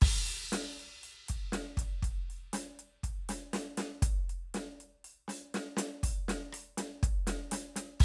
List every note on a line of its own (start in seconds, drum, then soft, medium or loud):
0.01 kick loud
0.01 crash loud
0.26 open hi-hat medium
0.52 snare medium
0.52 open hi-hat loud
0.79 open hi-hat soft
1.03 open hi-hat medium
1.28 kick medium
1.28 open hi-hat loud
1.52 snare medium
1.52 closed hi-hat medium
1.77 kick medium
1.77 closed hi-hat medium
1.81 kick soft
2.02 kick medium
2.02 open hi-hat medium
2.30 open hi-hat soft
2.53 snare medium
2.53 open hi-hat loud
2.79 closed hi-hat medium
3.03 kick medium
3.03 open hi-hat medium
3.29 snare medium
3.29 open hi-hat medium
3.53 snare medium
3.53 open hi-hat medium
3.77 snare medium
3.77 open hi-hat medium
4.02 kick medium
4.02 open hi-hat loud
4.29 open hi-hat medium
4.54 snare medium
4.54 open hi-hat medium
4.80 open hi-hat medium
5.04 open hi-hat medium
5.28 open hi-hat medium
5.28 snare medium
5.54 snare medium
5.54 open hi-hat medium
5.77 snare medium
5.77 closed hi-hat loud
6.03 kick medium
6.03 open hi-hat loud
6.28 snare medium
6.28 open hi-hat loud
6.53 cross-stick medium
6.53 open hi-hat medium
6.77 snare medium
6.77 closed hi-hat loud
7.03 kick medium
7.03 closed hi-hat medium
7.27 snare medium
7.27 open hi-hat loud
7.51 snare medium
7.51 open hi-hat loud
7.76 snare medium
7.76 open hi-hat loud
8.00 kick loud
8.00 crash loud